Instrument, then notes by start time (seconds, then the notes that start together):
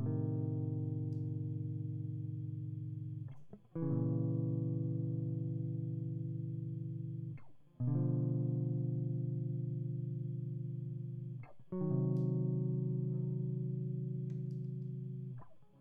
electric guitar
0.00 A2 C3
0.07 D#3
3.77 E3
3.84 C#3
3.92 A#2
7.82 B2
7.89 D3
7.96 F3
11.73 F#3
11.82 D#3
11.92 C3